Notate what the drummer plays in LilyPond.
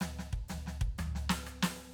\new DrumStaff \drummode { \time 4/4 \tempo 4 = 122 \tuplet 3/2 { <hhp sn tomfh>8 <sn tomfh>8 bd8 <hhp sn tomfh>8 <tomfh sn>8 bd8 <hhp tomfh ss>8 sn8 sn8 <hhp ss>8 <hho sn>8 r8 } | }